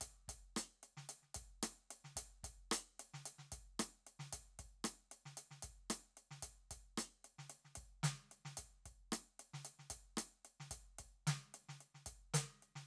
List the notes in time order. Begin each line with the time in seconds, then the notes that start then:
0.01 kick, closed hi-hat
0.28 kick, closed hi-hat
0.56 closed hi-hat, cross-stick
0.83 closed hi-hat
0.97 snare
1.09 closed hi-hat
1.23 snare
1.35 kick, closed hi-hat
1.63 cross-stick, closed hi-hat
1.91 closed hi-hat
2.04 snare
2.16 kick, closed hi-hat
2.44 kick, closed hi-hat
2.71 closed hi-hat, cross-stick
3.00 closed hi-hat
3.14 snare
3.26 closed hi-hat
3.39 snare
3.52 kick, closed hi-hat
3.79 cross-stick, closed hi-hat
4.07 closed hi-hat
4.19 snare
4.33 kick, closed hi-hat
4.59 kick, closed hi-hat
4.84 cross-stick, closed hi-hat
5.11 closed hi-hat
5.26 snare
5.37 closed hi-hat
5.51 snare
5.62 kick, closed hi-hat
5.90 cross-stick, closed hi-hat
6.17 closed hi-hat
6.31 snare
6.43 kick, closed hi-hat
6.71 kick, closed hi-hat
6.98 closed hi-hat, cross-stick
7.24 closed hi-hat
7.39 snare
7.50 closed hi-hat
7.65 snare
7.75 kick, closed hi-hat
8.03 closed hi-hat, snare
8.31 closed hi-hat
8.45 snare
8.57 kick, closed hi-hat
8.86 kick, closed hi-hat
9.12 cross-stick, closed hi-hat
9.39 closed hi-hat
9.54 snare
9.65 closed hi-hat
9.79 snare
9.90 kick, closed hi-hat
10.17 cross-stick, closed hi-hat
10.45 closed hi-hat
10.60 snare
10.71 kick, closed hi-hat
10.99 kick, closed hi-hat
11.27 snare, closed hi-hat
11.54 closed hi-hat
11.69 snare
11.81 closed hi-hat
11.95 snare
12.06 kick, closed hi-hat
12.34 closed hi-hat, snare
12.62 closed hi-hat
12.76 snare